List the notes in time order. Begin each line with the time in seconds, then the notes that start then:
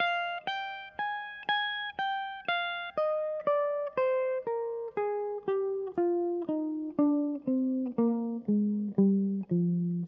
0.00 F5
0.47 G5
0.99 G#5
1.49 G#5
1.99 G5
2.49 F5
2.98 D#5
3.47 D5
3.98 C5
4.47 A#4
4.97 G#4
5.48 G4
5.98 F4
6.49 D#4
6.99 D4
7.48 C4
7.88 B3
7.99 A#3
8.49 G#3
8.99 G3
9.52 F3